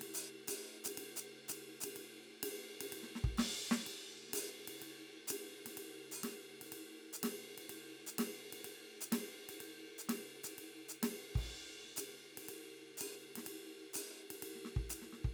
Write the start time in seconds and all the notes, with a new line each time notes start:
0.01 ride
0.14 hi-hat pedal
0.48 hi-hat pedal, ride
0.84 hi-hat pedal, ride
0.97 ride
1.16 hi-hat pedal
1.48 hi-hat pedal, ride
1.80 hi-hat pedal, ride
1.96 ride
2.34 snare
2.43 ride
2.81 ride
2.92 ride
3.03 snare
3.15 snare
3.24 kick
3.37 snare, ride
3.71 snare
3.86 ride
4.22 snare
4.26 snare
4.29 snare
4.33 hi-hat pedal, ride
4.67 ride
4.77 hi-hat pedal
4.82 ride
5.18 snare
5.27 hi-hat pedal, ride
5.65 snare, ride
5.71 hi-hat pedal
5.77 ride
6.11 hi-hat pedal
6.23 snare, ride
6.61 ride
6.65 hi-hat pedal
6.72 ride
7.13 hi-hat pedal
7.23 snare, ride
7.55 snare, ride
7.60 hi-hat pedal
7.69 ride
8.06 hi-hat pedal
8.18 snare, ride
8.52 hi-hat pedal, ride
8.64 ride
9.01 hi-hat pedal
9.12 snare, ride
9.49 hi-hat pedal, ride
9.60 ride
9.98 hi-hat pedal
10.09 snare, ride
10.43 hi-hat pedal, ride
10.58 ride
10.88 hi-hat pedal
11.03 snare, ride
11.35 kick, ride
11.84 snare
11.96 hi-hat pedal, ride
12.37 ride
12.43 hi-hat pedal
12.48 ride
12.97 hi-hat pedal, ride
13.19 hi-hat pedal
13.35 snare, ride
13.44 hi-hat pedal, ride
13.83 snare
13.93 hi-hat pedal, ride
14.30 ride
14.35 hi-hat pedal
14.42 ride
14.55 snare
14.65 snare
14.76 kick
14.89 hi-hat pedal, ride
15.02 snare
15.12 snare
15.24 kick